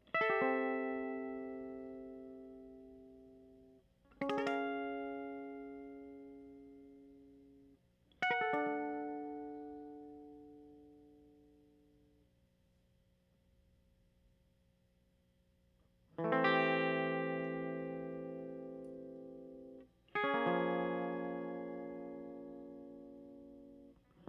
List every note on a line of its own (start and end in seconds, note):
0.15 3.33 E5
0.22 2.65 A4
0.31 3.84 G4
0.42 3.81 C4
4.22 7.79 C#4
4.30 7.77 G#4
4.30 4.38 C#5
4.38 4.47 A4
4.46 4.84 A#4
4.46 6.34 F5
8.23 10.37 F#5
8.35 9.30 A#4
8.42 12.24 A4
8.54 12.26 D4
16.20 19.86 E3
16.25 19.85 A3
16.33 19.89 C4
16.45 19.83 G4
20.16 22.69 G#4
20.24 23.96 C#4
20.35 23.96 A#3
20.48 23.94 F3